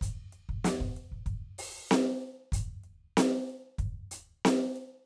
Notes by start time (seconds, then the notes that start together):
0.01 closed hi-hat, kick
0.33 closed hi-hat
0.49 kick
0.64 closed hi-hat, snare
0.80 kick
0.96 closed hi-hat
1.12 kick
1.26 kick, closed hi-hat
1.58 open hi-hat
1.91 open hi-hat, snare, hi-hat pedal
2.23 closed hi-hat
2.52 closed hi-hat, kick
2.84 closed hi-hat
3.17 closed hi-hat, snare
3.50 closed hi-hat
3.78 kick, closed hi-hat
4.11 open hi-hat
4.45 snare, hi-hat pedal, open hi-hat
4.76 closed hi-hat